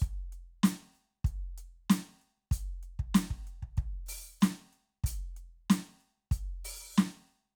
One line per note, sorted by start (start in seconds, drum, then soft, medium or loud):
0.02 kick medium
0.02 hi-hat pedal medium
0.33 closed hi-hat soft
0.64 closed hi-hat loud
0.64 snare loud
0.95 closed hi-hat soft
1.25 kick medium
1.25 closed hi-hat medium
1.59 closed hi-hat medium
1.91 closed hi-hat loud
1.91 snare loud
2.22 closed hi-hat soft
2.52 closed hi-hat loud
2.52 kick medium
2.84 closed hi-hat soft
3.00 kick medium
3.15 closed hi-hat loud
3.15 snare loud
3.31 kick medium
3.48 closed hi-hat soft
3.63 kick soft
3.78 kick medium
3.78 closed hi-hat soft
4.07 open hi-hat loud
4.07 hi-hat pedal soft
4.42 closed hi-hat loud
4.42 snare loud
4.42 hi-hat pedal medium
4.74 closed hi-hat soft
5.05 closed hi-hat loud
5.05 kick medium
5.37 closed hi-hat soft
5.71 closed hi-hat loud
5.71 snare loud
6.01 closed hi-hat soft
6.32 closed hi-hat medium
6.32 kick medium
6.66 open hi-hat loud
6.99 snare loud
6.99 hi-hat pedal medium